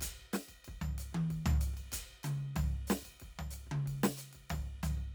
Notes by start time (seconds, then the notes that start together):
0.01 kick, closed hi-hat, ride bell
0.33 snare, hi-hat pedal, ride bell
0.48 kick, ride bell
0.65 kick, ride bell
0.82 floor tom
0.98 hi-hat pedal, ride
1.13 kick, high tom
1.30 kick, ride
1.46 floor tom
1.61 hi-hat pedal, ride
1.74 kick, ride bell
1.92 kick, closed hi-hat, ride bell
2.24 hi-hat pedal, mid tom, ride bell
2.36 kick
2.56 kick, floor tom, ride
2.87 snare, hi-hat pedal, ride bell
3.02 kick, ride bell
3.20 kick, ride
3.39 floor tom
3.51 hi-hat pedal, ride
3.67 kick
3.72 mid tom
3.86 kick, ride
4.04 snare
4.18 hi-hat pedal, ride bell
4.33 kick, ride
4.50 kick, ride, floor tom
4.83 floor tom, hi-hat pedal, ride bell
4.97 kick